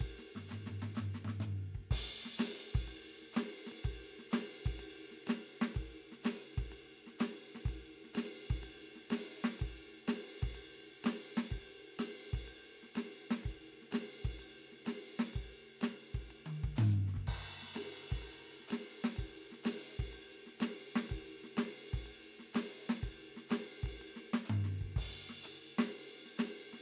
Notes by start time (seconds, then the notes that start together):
0.01 kick, ride
0.19 snare
0.36 snare, floor tom
0.49 snare, floor tom, hi-hat pedal
0.67 snare, floor tom
0.82 snare, floor tom
0.95 snare, floor tom, hi-hat pedal
1.15 snare
1.25 snare, floor tom
1.41 floor tom, hi-hat pedal
1.75 kick
1.91 kick, ride
2.26 snare
2.38 snare, hi-hat pedal, ride
2.75 kick, ride
2.88 ride
3.22 snare
3.34 snare, hi-hat pedal, ride
3.67 snare
3.72 ride
3.85 kick, ride
4.19 snare
4.32 snare, hi-hat pedal, ride
4.66 kick, ride
4.78 hi-hat pedal, ride
5.12 snare
5.27 snare, hi-hat pedal, ride
5.62 snare, ride
5.75 kick, ride
6.12 snare
6.24 snare, hi-hat pedal, ride
6.58 kick, ride
6.72 ride
7.07 snare
7.19 snare, hi-hat pedal, ride
7.55 snare, ride
7.66 kick, ride
8.04 snare
8.14 snare, hi-hat pedal, ride
8.51 kick, ride
8.62 hi-hat pedal, ride
8.96 snare
9.11 snare, hi-hat pedal, ride
9.45 snare, ride
9.60 kick, ride
9.96 snare
10.08 snare, hi-hat pedal, ride
10.43 kick, ride
10.55 ride
10.91 snare
11.04 snare, hi-hat pedal, ride
11.38 snare, ride
11.51 kick, ride
12.00 snare, hi-hat pedal, ride
12.34 kick, ride
12.46 hi-hat pedal, ride
12.83 snare
12.95 snare, hi-hat pedal, ride
13.31 snare, ride
13.44 kick, ride
13.82 snare
13.92 snare, hi-hat pedal, ride
14.25 kick, ride
14.37 hi-hat pedal, ride
14.72 snare
14.86 snare, hi-hat pedal, ride
15.20 snare, ride
15.34 kick, ride
15.68 snare
15.81 snare, hi-hat pedal, ride
16.15 kick, ride
16.31 ride
16.46 high tom
16.64 kick
16.76 floor tom, hi-hat pedal
17.08 snare
17.14 kick, snare
17.17 snare
17.20 snare
17.24 snare, crash
17.29 kick
17.63 snare
17.75 snare, hi-hat pedal, ride
18.12 kick, ride
18.22 hi-hat pedal, ride
18.60 snare
18.68 hi-hat pedal, ride
18.73 snare
19.05 snare, ride
19.17 kick, ride
19.52 snare
19.64 snare, hi-hat pedal, ride
20.00 kick, ride
20.14 ride
20.47 snare
20.60 snare, hi-hat pedal, ride
20.96 snare, ride
21.10 kick, ride
21.44 snare
21.58 snare, hi-hat pedal, ride
21.94 kick, ride
22.06 ride
22.40 snare
22.54 snare, hi-hat pedal, ride
22.90 snare, ride
23.03 kick, ride
23.37 snare
23.50 snare, hi-hat pedal, ride
23.84 kick, ride
24.02 ride
24.17 snare
24.34 snare
24.45 hi-hat pedal
24.50 floor tom
24.65 snare
24.82 kick
24.97 kick, ride
25.15 snare
25.30 snare
25.44 hi-hat pedal, ride
25.79 snare, ride
25.91 ride
26.26 snare
26.38 snare, hi-hat pedal, ride
26.73 snare, ride